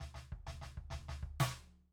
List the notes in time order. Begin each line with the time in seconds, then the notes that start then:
0.00 snare, floor tom
0.14 snare, floor tom
0.32 kick
0.47 snare, floor tom
0.61 snare, floor tom
0.77 kick
0.90 snare, floor tom
1.08 snare, floor tom
1.23 kick
1.40 open hi-hat, snare